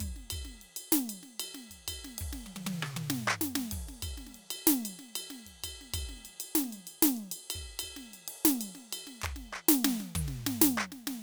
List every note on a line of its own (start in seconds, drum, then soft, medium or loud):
0.01 kick soft
0.01 ride bell medium
0.07 kick soft
0.17 snare soft
0.31 kick soft
0.31 ride bell loud
0.45 snare soft
0.52 snare soft
0.62 ride medium
0.77 ride bell medium
0.93 snare loud
1.10 ride bell medium
1.24 snare soft
1.40 hi-hat pedal medium
1.40 ride bell loud
1.55 snare soft
1.71 kick soft
1.71 ride bell soft
1.88 kick soft
1.88 ride bell loud
2.05 snare soft
2.19 kick soft
2.19 ride loud
2.33 snare soft
2.47 high tom soft
2.67 high tom loud
2.83 cross-stick medium
2.83 hi-hat pedal soft
2.97 mid tom loud
3.10 snare medium
3.22 hi-hat pedal soft
3.28 percussion loud
3.42 snare medium
3.56 snare medium
3.72 kick soft
3.72 ride loud
3.80 kick soft
3.89 snare soft
4.03 kick soft
4.03 ride bell loud
4.18 snare soft
4.27 snare soft
4.35 ride medium
4.51 ride bell loud
4.67 snare loud
4.86 ride bell medium
5.00 snare soft
5.16 hi-hat pedal medium
5.16 ride bell loud
5.31 snare soft
5.46 kick soft
5.46 ride medium
5.64 kick soft
5.64 ride bell loud
5.82 snare soft
5.94 kick soft
5.94 ride bell loud
6.00 kick soft
6.09 snare soft
6.17 snare soft
6.24 snare soft
6.24 ride bell medium
6.41 ride bell medium
6.56 snare medium
6.64 snare soft
6.73 ride bell medium
6.88 ride bell medium
7.03 snare loud
7.16 hi-hat pedal soft
7.16 ride medium
7.32 ride bell loud
7.51 ride bell loud
7.56 kick soft
7.80 kick soft
7.80 ride bell loud
7.97 snare soft
8.11 snare soft
8.11 ride bell soft
8.28 ride loud
8.46 snare loud
8.61 ride bell medium
8.75 snare soft
8.93 hi-hat pedal soft
8.93 ride bell loud
9.08 snare soft
9.21 kick soft
9.21 percussion loud
9.21 hi-hat pedal soft
9.30 kick soft
9.37 snare soft
9.53 percussion medium
9.69 snare loud
9.85 snare loud
10.01 snare soft
10.16 kick soft
10.16 hi-hat pedal loud
10.16 mid tom loud
10.28 snare soft
10.47 snare medium
10.62 snare loud
10.78 percussion loud
10.92 snare soft
11.08 snare medium